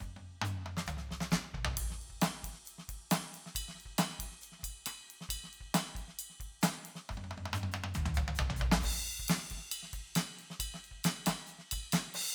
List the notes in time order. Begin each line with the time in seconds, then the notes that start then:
0.01 kick, hi-hat pedal, high tom
0.17 high tom
0.42 hi-hat pedal, high tom
0.67 high tom
0.78 snare
0.86 kick, hi-hat pedal, mid tom
0.98 snare
1.10 kick, snare
1.21 snare
1.32 kick, snare, hi-hat pedal
1.38 kick
1.45 cross-stick
1.55 kick, floor tom
1.62 kick, floor tom
1.78 kick, hi-hat pedal, ride
1.88 kick, snare
2.02 ride
2.10 kick
2.15 kick
2.22 snare, hi-hat pedal, ride
2.44 kick, ride
2.50 kick, snare
2.66 hi-hat pedal, ride
2.79 snare
2.89 kick, ride
2.95 kick
3.11 snare, hi-hat pedal, ride
3.22 snare
3.35 ride
3.47 snare
3.56 kick, hi-hat pedal, ride bell
3.62 kick
3.69 snare
3.76 snare
3.81 ride
3.86 kick
3.91 kick
3.99 snare, hi-hat pedal, ride bell
4.10 snare
4.20 kick, ride
4.26 kick
4.32 snare
4.42 hi-hat pedal, ride
4.52 snare
4.60 kick, snare
4.65 ride bell
4.70 kick
4.87 cross-stick, hi-hat pedal, ride bell
5.11 ride
5.22 snare
5.30 kick, hi-hat pedal, ride bell
5.36 kick
5.44 snare
5.54 ride
5.61 kick
5.66 kick
5.75 snare, hi-hat pedal, ride bell
5.96 kick, ride
6.02 kick
6.09 snare
6.19 hi-hat pedal, ride bell
6.30 snare
6.41 kick, ride
6.46 kick
6.62 snare, hi-hat pedal, ride bell
6.71 snare
6.86 ride
6.96 snare
7.10 kick, hi-hat pedal, high tom
7.18 kick, high tom
7.25 high tom
7.32 high tom
7.38 high tom
7.46 high tom
7.54 hi-hat pedal, high tom
7.64 high tom
7.72 kick, hi-hat pedal, high tom
7.84 high tom
7.95 kick, hi-hat pedal, mid tom
8.04 kick, mid tom
8.15 kick, hi-hat pedal, mid tom
8.29 mid tom
8.36 kick, hi-hat pedal, floor tom
8.51 floor tom
8.57 kick, hi-hat pedal
8.62 floor tom
8.72 snare
8.80 kick, snare, hi-hat pedal
8.84 crash
8.96 cross-stick
9.06 snare
9.20 kick
9.26 kick, ride
9.30 snare, hi-hat pedal
9.38 snare
9.51 kick, ride
9.58 kick, snare
9.72 hi-hat pedal, ride bell
9.83 snare
9.90 kick, snare
9.94 ride
10.00 kick
10.16 snare, hi-hat pedal, ride bell
10.40 ride
10.51 snare
10.60 kick, hi-hat pedal, ride bell
10.66 kick
10.75 snare
10.85 ride
10.92 kick
11.04 snare, hi-hat pedal, ride bell
11.27 kick, snare, ride bell
11.47 hi-hat pedal, ride
11.59 snare
11.72 kick, ride bell
11.81 kick
11.93 snare, hi-hat pedal, ride bell
12.15 crash